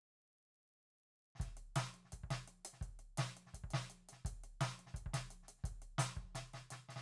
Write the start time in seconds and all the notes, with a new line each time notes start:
1.35 snare
1.38 kick, snare
1.41 snare, closed hi-hat
1.44 snare
1.57 closed hi-hat
1.76 snare, closed hi-hat
1.94 closed hi-hat
2.05 snare
2.12 kick, closed hi-hat
2.23 kick
2.30 snare, closed hi-hat
2.47 closed hi-hat
2.65 closed hi-hat
2.73 snare
2.81 kick, closed hi-hat
2.99 closed hi-hat
3.17 snare, closed hi-hat
3.37 closed hi-hat
3.46 snare
3.54 kick, closed hi-hat
3.64 kick
3.70 snare, closed hi-hat
3.90 closed hi-hat
4.09 snare, closed hi-hat
4.25 kick, closed hi-hat
4.44 closed hi-hat
4.61 snare, closed hi-hat
4.79 closed hi-hat
4.86 snare
4.94 kick, closed hi-hat
5.06 kick
5.13 snare, closed hi-hat
5.30 closed hi-hat
5.43 snare
5.48 closed hi-hat
5.58 snare
5.64 kick, closed hi-hat
5.82 closed hi-hat
5.98 closed hi-hat, snare
6.16 kick, closed hi-hat
6.35 snare, closed hi-hat
6.53 snare, closed hi-hat
6.70 snare, closed hi-hat
6.89 snare, closed hi-hat
6.96 snare